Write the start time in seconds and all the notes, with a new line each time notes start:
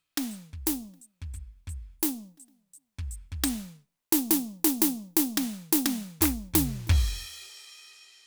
0.18 snare
0.31 closed hi-hat
0.53 kick
0.66 closed hi-hat, snare
0.94 snare
1.01 closed hi-hat
1.22 kick
1.34 closed hi-hat, kick
1.67 closed hi-hat, kick
2.00 closed hi-hat, snare, hi-hat pedal
2.37 closed hi-hat, snare
2.48 snare
2.74 closed hi-hat
2.78 snare
2.99 kick
3.11 closed hi-hat
3.32 kick
3.44 closed hi-hat, snare
4.12 snare
4.31 snare
4.65 snare
4.82 snare
5.17 snare
5.37 snare
5.73 snare
5.86 snare
6.21 kick, percussion, snare
6.54 kick, snare, mid tom
6.87 kick, snare, crash